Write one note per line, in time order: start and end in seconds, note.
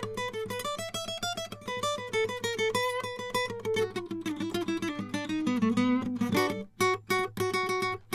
0.00 0.18 A4
0.18 0.29 B4
0.29 0.46 A4
0.51 0.67 B4
0.65 0.77 D5
0.80 0.91 E5
0.95 1.09 E5
1.09 1.19 E5
1.24 1.35 F5
1.38 1.49 E5
1.53 1.71 D5
1.69 1.87 B4
1.84 1.99 D5
1.99 2.11 B4
2.14 2.28 A4
2.30 2.42 B4
2.44 2.57 A#4
2.60 2.72 A4
2.75 3.02 B4
3.05 3.20 B4
3.20 3.32 B4
3.35 3.46 B4
3.46 3.63 A#4
3.66 3.75 A4
3.75 3.87 A4
3.80 3.93 F#4
3.97 4.09 F4
4.12 4.24 E4
4.26 4.35 D#4
4.41 4.53 E4
4.55 4.66 F4
4.69 4.80 E4
4.83 4.93 E4
4.93 5.06 D4
5.00 5.16 B3
5.15 5.27 D4
5.30 5.53 D#4
5.47 5.60 B3
5.63 5.76 A3
5.78 6.07 B3
6.07 6.19 B3
6.22 6.31 B3
6.35 6.55 D4
6.35 6.49 F#4
6.35 6.50 B4
6.50 6.63 A4
6.50 6.67 D5
6.81 6.99 F#4
7.11 7.29 F#4
7.38 7.53 F#4
7.55 7.70 F#4
7.70 7.83 F#4
7.83 7.99 F#4